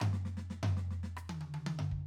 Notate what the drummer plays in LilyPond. \new DrumStaff \drummode { \time 4/4 \tempo 4 = 116 <ss tomfh>16 sn16 sn16 sn16 sn16 tomfh16 sn16 sn16 sn16 ss16 <tommh hh>16 tommh16 tommh16 tommh16 tomfh16 bd16 | }